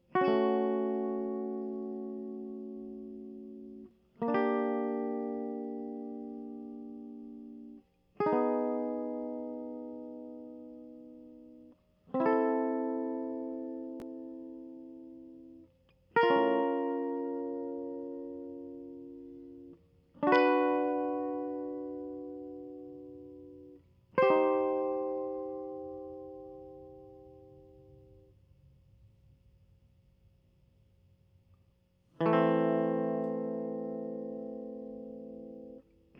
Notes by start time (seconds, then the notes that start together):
0.15 F#4
0.21 C#4
0.28 A3
4.22 A#3
4.28 D4
4.34 G4
8.20 G#4
8.26 D#4
8.33 B3
12.15 C4
12.20 E4
12.26 A4
16.16 A#4
16.23 F4
16.30 C#4
16.38 A2
20.23 D4
20.27 F#4
20.32 B4
24.18 C5
24.23 G4
24.30 D#4
32.21 E3
32.26 A3
32.33 C4